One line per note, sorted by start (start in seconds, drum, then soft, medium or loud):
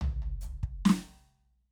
0.02 closed hi-hat soft
0.02 floor tom loud
0.02 high tom loud
0.23 floor tom medium
0.23 high tom soft
0.42 floor tom medium
0.42 hi-hat pedal medium
0.42 high tom soft
0.64 kick medium
0.86 snare loud
0.90 snare loud